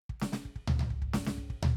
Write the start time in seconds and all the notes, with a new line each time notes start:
0.09 kick
0.20 snare, ride
0.32 snare, ride
0.45 kick
0.56 kick
0.67 floor tom, high tom
0.79 floor tom, high tom
0.90 kick
1.02 kick
1.13 snare, ride
1.25 snare, ride
1.38 kick
1.50 kick
1.63 floor tom, high tom